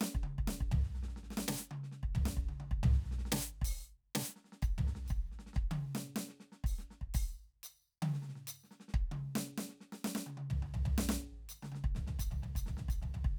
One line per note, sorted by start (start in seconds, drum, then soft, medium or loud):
0.02 snare loud
0.15 kick soft
0.24 high tom medium
0.39 kick soft
0.48 snare medium
0.61 kick soft
0.72 floor tom loud
0.84 snare soft
0.95 snare soft
1.03 snare soft
1.09 snare soft
1.17 snare soft
1.24 snare soft
1.31 snare medium
1.38 snare medium
1.49 snare medium
1.60 snare soft
1.72 high tom medium
1.84 snare soft
1.92 snare soft
2.04 kick soft
2.16 floor tom medium
2.26 snare medium
2.38 kick soft
2.49 high tom medium
2.61 high tom medium
2.72 kick soft
2.84 floor tom loud
2.94 snare soft
3.05 snare soft
3.12 snare soft
3.19 snare soft
3.26 snare soft
3.33 snare loud
3.62 kick medium
3.62 percussion loud
4.16 snare loud
4.29 snare soft
4.37 snare soft
4.42 snare soft
4.45 snare soft
4.53 snare soft
4.63 kick medium
4.63 hi-hat pedal soft
4.79 floor tom medium
4.88 snare soft
4.96 snare soft
5.06 snare soft
5.06 hi-hat pedal soft
5.11 kick medium
5.32 snare soft
5.40 snare soft
5.47 snare soft
5.54 kick medium
5.54 snare soft
5.72 high tom loud
5.96 snare medium
6.17 snare medium
6.17 hi-hat pedal soft
6.29 snare soft
6.41 snare soft
6.53 snare soft
6.65 kick medium
6.65 percussion medium
6.79 snare soft
6.91 snare soft
7.02 kick soft
7.15 kick medium
7.15 percussion medium
7.64 hi-hat pedal medium
8.03 high tom loud
8.14 snare soft
8.23 snare soft
8.29 snare soft
8.36 snare soft
8.48 hi-hat pedal loud
8.64 snare soft
8.72 snare soft
8.81 snare soft
8.89 snare soft
8.95 kick medium
9.12 high tom loud
9.36 snare loud
9.59 snare medium
9.70 snare soft
9.81 snare soft
9.93 snare medium
10.05 snare medium
10.16 snare medium
10.27 high tom medium
10.38 high tom medium
10.51 floor tom medium
10.63 high tom medium
10.75 floor tom medium
10.86 floor tom medium
10.99 snare loud
11.10 snare loud
11.50 hi-hat pedal medium
11.63 snare soft
11.63 high tom medium
11.73 snare soft
11.73 high tom medium
11.85 kick medium
11.96 snare soft
11.96 floor tom medium
12.08 snare soft
12.08 floor tom medium
12.20 kick soft
12.20 hi-hat pedal medium
12.31 floor tom medium
12.31 high tom soft
12.43 floor tom medium
12.43 high tom soft
12.56 kick soft
12.56 hi-hat pedal medium
12.67 snare soft
12.67 floor tom medium
12.78 snare soft
12.78 floor tom medium
12.89 kick soft
12.89 hi-hat pedal medium
13.03 floor tom medium
13.03 high tom soft
13.15 floor tom medium
13.15 high tom medium
13.25 kick medium